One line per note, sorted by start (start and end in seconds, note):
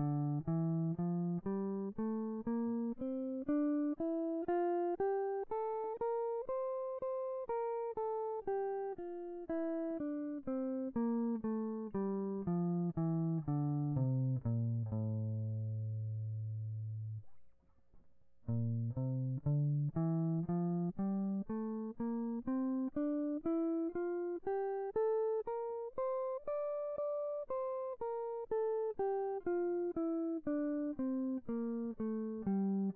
0.00 0.44 D3
0.49 0.97 E3
1.00 1.42 F3
1.47 1.93 G3
1.99 2.46 A3
2.48 2.96 A#3
3.02 3.45 C4
3.49 3.96 D4
4.01 4.47 E4
4.49 4.98 F4
5.01 5.47 G4
5.52 6.00 A4
6.02 6.47 A#4
6.49 7.01 C5
7.03 7.47 C5
7.50 7.95 A#4
7.98 8.43 A4
8.48 8.95 G4
9.50 10.00 E4
10.01 10.42 D4
10.48 10.93 C4
10.97 11.42 A#3
11.45 11.91 A3
11.96 12.47 G3
12.48 12.94 F3
12.98 13.42 E3
13.49 14.07 D3
13.98 14.41 C3
14.48 14.84 A#2
14.84 14.92 A2
14.94 17.22 A2
18.51 18.95 A#2
18.98 19.43 C3
19.48 19.92 D3
19.98 20.48 E3
20.50 20.94 F3
21.00 21.46 G3
21.50 21.95 A3
22.01 22.43 A#3
22.48 22.91 C4
22.97 23.41 D4
23.46 23.94 E4
23.96 24.41 F4
24.47 24.93 G4
24.96 25.44 A4
25.48 25.93 A#4
25.98 26.41 C5
26.48 26.98 D5
26.98 27.47 D5
27.51 27.96 C5
28.02 28.47 A#4
28.52 28.93 A4
29.00 29.41 G4
29.47 29.95 F4
29.97 30.41 E4
30.47 30.95 D4
31.00 31.42 C4
31.49 31.95 A#3
32.01 32.46 A3
32.48 32.94 G3